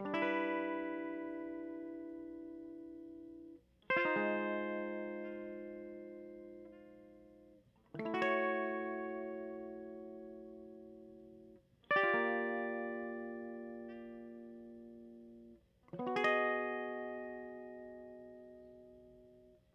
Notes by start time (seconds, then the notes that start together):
0.00 G3
0.06 D4
0.15 E4
0.23 B4
3.91 C5
3.98 F4
4.06 D#4
4.17 G#3
8.00 A3
8.06 E4
8.15 F#4
8.23 C#5
11.91 D5
11.97 G4
12.04 F4
12.15 A#3
16.00 B3
16.08 F#4
16.17 G#4
16.25 D#5